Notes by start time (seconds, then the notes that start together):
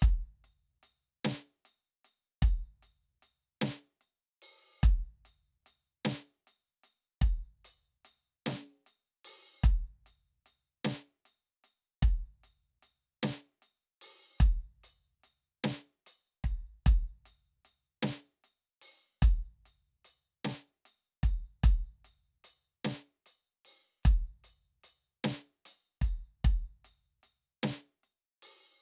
0.01 kick, hi-hat pedal
0.06 closed hi-hat
0.44 closed hi-hat
0.83 closed hi-hat
1.25 closed hi-hat, snare
1.65 closed hi-hat
2.05 closed hi-hat
2.42 kick, closed hi-hat
2.83 closed hi-hat
3.23 closed hi-hat
3.62 snare, closed hi-hat
4.01 closed hi-hat
4.42 percussion
4.83 kick, closed hi-hat, hi-hat pedal
5.25 closed hi-hat
5.66 closed hi-hat
6.05 closed hi-hat, snare
6.47 closed hi-hat
6.84 closed hi-hat
7.21 kick, closed hi-hat
7.65 closed hi-hat
8.05 closed hi-hat
8.46 closed hi-hat, snare
8.48 snare
8.87 closed hi-hat
9.25 percussion
9.62 kick, hi-hat pedal
9.66 closed hi-hat
10.06 closed hi-hat
10.46 closed hi-hat
10.85 snare, closed hi-hat
11.26 closed hi-hat
11.64 closed hi-hat
12.03 kick, closed hi-hat
12.44 closed hi-hat
12.83 closed hi-hat
13.23 closed hi-hat, snare
13.62 closed hi-hat
14.02 percussion
14.39 kick, hi-hat pedal
14.43 closed hi-hat
14.84 closed hi-hat
15.24 closed hi-hat
15.64 snare, closed hi-hat
16.07 closed hi-hat
16.44 kick, closed hi-hat
16.86 kick, closed hi-hat
17.26 closed hi-hat
17.65 closed hi-hat
18.03 closed hi-hat, snare
18.44 closed hi-hat
18.82 percussion
19.22 closed hi-hat, kick, hi-hat pedal
19.66 closed hi-hat
20.05 closed hi-hat
20.45 closed hi-hat, snare
20.86 closed hi-hat
21.23 kick, closed hi-hat
21.64 closed hi-hat, kick
22.05 closed hi-hat
22.44 closed hi-hat
22.85 snare, closed hi-hat
23.26 closed hi-hat
23.65 percussion
24.04 kick, closed hi-hat, hi-hat pedal
24.44 closed hi-hat
24.84 closed hi-hat
25.24 closed hi-hat, snare
25.66 closed hi-hat
26.02 kick, closed hi-hat
26.45 kick, closed hi-hat
26.85 closed hi-hat
27.23 closed hi-hat
27.63 snare, closed hi-hat
28.04 closed hi-hat
28.43 percussion